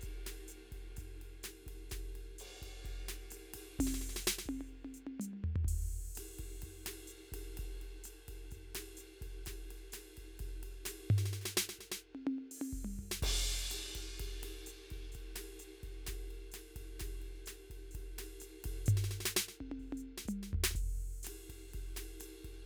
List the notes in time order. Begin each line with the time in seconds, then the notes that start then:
0.01 kick, hi-hat pedal, ride
0.09 kick
0.26 snare, ride
0.48 hi-hat pedal, ride
0.72 kick, ride
0.96 kick, hi-hat pedal, ride
1.21 ride
1.43 snare, hi-hat pedal, ride
1.67 kick, ride
1.78 snare
1.90 kick, snare, hi-hat pedal, ride
2.15 ride
2.27 snare
2.38 snare, hi-hat pedal, ride
2.62 kick, ride
2.67 kick
2.84 kick, hi-hat pedal, ride
2.90 kick
3.08 snare, ride
3.31 hi-hat pedal, ride
3.54 kick, ride
3.79 kick, hi-hat pedal, high tom
3.85 kick, snare
3.94 snare
4.01 snare
4.09 snare
4.16 snare
4.27 snare
4.39 snare
4.46 kick, high tom
4.61 high tom
4.69 hi-hat pedal
4.85 high tom
4.94 hi-hat pedal
5.07 high tom
5.20 hi-hat pedal, mid tom
5.33 mid tom
5.44 floor tom
5.56 floor tom
5.64 kick, floor tom, crash
6.15 snare, hi-hat pedal, ride
6.39 kick, ride
6.44 kick
6.61 kick, hi-hat pedal, ride
6.69 kick
6.86 snare, ride
7.07 hi-hat pedal
7.32 kick, ride
7.57 kick, hi-hat pedal, ride
7.64 kick
7.81 ride
8.04 snare, hi-hat pedal, ride
8.28 kick, ride
8.51 kick, hi-hat pedal, ride
8.57 kick
8.75 snare, ride
8.97 hi-hat pedal, ride
9.22 kick, ride
9.27 kick
9.45 kick, snare, hi-hat pedal, ride
9.52 kick
9.71 ride
9.77 snare
9.82 snare
9.92 snare, hi-hat pedal, ride
10.17 kick, ride
10.37 kick, hi-hat pedal, ride
10.46 kick
10.63 ride
10.71 snare
10.85 snare, hi-hat pedal, ride
11.10 floor tom
11.18 snare
11.26 snare
11.33 snare
11.41 snare
11.45 snare
11.57 kick, snare
11.69 snare
11.79 kick, snare
11.92 snare
12.15 high tom
12.27 high tom
12.38 high tom
12.51 hi-hat pedal, high tom
12.61 high tom
12.73 kick
12.78 kick
12.85 mid tom
12.99 kick
13.04 kick
13.11 snare
13.22 kick, ride
13.29 kick
13.70 hi-hat pedal, ride
13.89 snare
13.95 kick, ride
14.00 kick
14.17 kick, hi-hat pedal, ride
14.25 kick
14.43 snare, ride
14.66 hi-hat pedal, ride
14.90 kick, ride
14.97 kick
15.12 kick, hi-hat pedal, ride
15.20 kick
15.36 snare, ride
15.59 hi-hat pedal, ride
15.83 kick, ride
15.88 kick
16.06 kick, snare, hi-hat pedal, ride
16.13 kick
16.31 ride
16.52 snare, hi-hat pedal, ride
16.76 kick, ride
16.81 kick
16.99 kick, snare, hi-hat pedal, ride
17.06 kick
17.22 ride
17.36 snare
17.46 snare, hi-hat pedal, ride
17.70 kick, ride
17.91 kick, hi-hat pedal
17.95 ride
18.00 kick
18.18 snare, ride
18.40 hi-hat pedal, ride
18.60 hi-hat pedal, ride
18.66 kick
18.71 kick
18.76 snare
18.86 hi-hat pedal, floor tom
18.97 snare
19.04 snare
19.11 snare
19.20 snare
19.25 snare
19.36 snare
19.48 snare
19.60 kick, high tom
19.72 high tom
19.79 kick, hi-hat pedal
19.85 high tom
19.92 open hi-hat, high tom
19.97 hi-hat pedal
20.05 high tom
20.18 snare
20.25 kick, hi-hat pedal, mid tom
20.43 snare
20.53 kick, floor tom
20.60 kick, snare
20.71 snare
20.75 kick, crash
20.81 kick
21.23 snare, hi-hat pedal, ride
21.50 kick, ride
21.71 kick, hi-hat pedal, ride
21.80 kick
21.96 snare, ride
22.20 snare, hi-hat pedal, ride
22.45 kick, ride